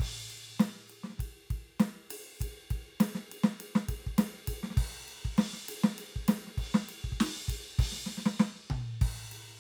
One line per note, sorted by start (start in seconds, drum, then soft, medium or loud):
0.01 kick medium
0.01 ride loud
0.31 ride medium
0.59 snare loud
0.59 hi-hat pedal soft
0.59 ride medium
0.89 hi-hat pedal soft
0.89 ride medium
1.05 snare medium
1.11 snare soft
1.19 kick medium
1.19 snare soft
1.19 ride medium
1.52 kick medium
1.52 ride medium
1.81 snare loud
1.81 ride medium
2.11 open hi-hat medium
2.11 ride loud
2.41 kick medium
2.41 hi-hat pedal medium
2.41 ride loud
2.72 kick medium
2.72 ride medium
3.01 snare loud
3.01 ride loud
3.16 snare medium
3.33 ride medium
3.45 snare loud
3.58 hi-hat pedal soft
3.58 ride loud
3.77 snare loud
3.90 kick medium
3.90 ride loud
4.08 kick medium
4.19 snare loud
4.19 ride loud
4.49 kick medium
4.49 ride loud
4.64 snare medium
4.72 snare medium
4.78 kick loud
4.78 crash medium
5.09 ride medium
5.26 kick medium
5.39 snare loud
5.39 ride loud
5.54 snare soft
5.70 hi-hat pedal soft
5.70 ride loud
5.85 snare loud
5.97 hi-hat pedal soft
5.97 ride medium
6.17 kick medium
6.29 snare loud
6.29 ride loud
6.48 snare soft
6.59 kick medium
6.59 ride medium
6.75 snare loud
6.90 ride medium
7.05 kick medium
7.13 kick medium
7.21 snare loud
7.21 ride loud
7.50 kick medium
7.50 ride medium
7.80 kick loud
7.80 ride loud
7.93 snare soft
8.07 snare medium
8.19 snare medium
8.27 snare loud
8.41 snare loud
8.71 kick medium
8.71 mid tom loud
9.03 kick loud
9.03 crash medium
9.33 ride medium